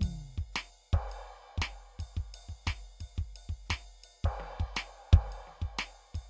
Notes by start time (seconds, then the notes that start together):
0.01 kick, hi-hat pedal, ride
0.22 hi-hat pedal
0.38 kick
0.53 snare, hi-hat pedal
0.57 ride
0.94 kick, crash
1.08 hi-hat pedal, ride
1.31 hi-hat pedal
1.58 kick, hi-hat pedal
1.62 snare, ride
2.00 kick, ride
2.14 kick, hi-hat pedal
2.35 ride
2.49 kick
2.65 kick, snare, hi-hat pedal
2.69 ride
3.01 kick, ride
3.16 kick, hi-hat pedal
3.36 hi-hat pedal, ride
3.50 kick
3.66 hi-hat pedal
3.70 kick, snare, ride
4.04 ride
4.23 kick, hi-hat pedal, crash
4.40 snare
4.60 kick
4.75 snare, hi-hat pedal, ride
5.13 kick, crash
5.28 hi-hat pedal
5.33 ride
5.48 snare
5.62 kick
5.79 snare, hi-hat pedal, ride
6.15 kick, ride